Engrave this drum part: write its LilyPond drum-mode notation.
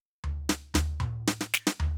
\new DrumStaff \drummode { \time 4/4 \tempo 4 = 118 r8 tomfh8 sn8 <tomfh sn>8 toml8 sn16 sn16 sn16 sn16 tomfh8 | }